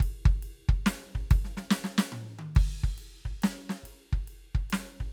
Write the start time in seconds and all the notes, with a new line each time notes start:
0.00 kick, ride
0.26 kick
0.43 ride
0.69 kick
0.86 snare, ride
1.15 kick
1.31 kick, ride
1.45 snare
1.57 snare
1.71 snare
1.84 snare
1.98 snare
2.12 mid tom
2.39 high tom
2.55 kick, crash
2.84 kick
2.98 ride
3.25 kick
3.42 snare, ride
3.69 snare
3.83 kick, ride
4.13 kick
4.28 ride
4.55 kick
4.70 snare, ride
5.00 kick